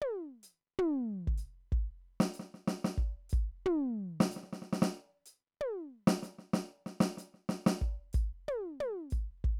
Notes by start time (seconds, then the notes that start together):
0.01 high tom
0.43 hi-hat pedal
0.78 floor tom
1.27 kick
1.38 hi-hat pedal
1.72 kick
2.20 snare
2.34 hi-hat pedal
2.39 snare
2.54 snare
2.68 snare
2.84 snare
2.98 kick
3.29 kick, hi-hat pedal
3.65 floor tom
4.20 snare
4.31 hi-hat pedal
4.36 snare
4.43 snare
4.53 snare
4.62 snare
4.73 snare
4.82 snare
5.26 hi-hat pedal
5.60 high tom
6.07 snare
6.23 snare, hi-hat pedal
6.38 snare
6.53 snare
6.86 snare
7.00 snare
7.17 snare, hi-hat pedal
7.34 snare
7.49 snare
7.66 snare
7.81 kick
8.13 kick, hi-hat pedal
8.48 open hi-hat, high tom
8.80 closed hi-hat, high tom
9.10 kick, hi-hat pedal
9.44 kick